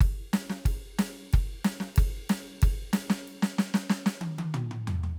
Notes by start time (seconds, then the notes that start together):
0.00 kick, ride
0.33 snare, ride
0.50 snare
0.65 kick, ride
0.99 snare, ride
1.33 kick, ride
1.65 snare, ride
1.80 snare
1.96 kick, ride
2.29 snare, ride
2.62 kick, ride
2.93 snare, ride
3.10 snare
3.28 ride
3.42 snare
3.58 snare
3.74 snare
3.90 snare
4.06 snare
4.21 high tom
4.38 high tom
4.54 mid tom
4.71 mid tom
4.87 floor tom
5.03 floor tom